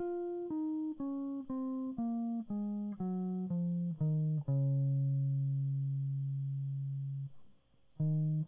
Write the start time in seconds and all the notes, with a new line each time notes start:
0.00 F4
0.51 D#4
1.00 C#4
1.50 C4
1.99 A#3
2.51 G#3
3.01 F#3
3.51 F3
4.02 D#3
4.49 C#3
8.01 D#3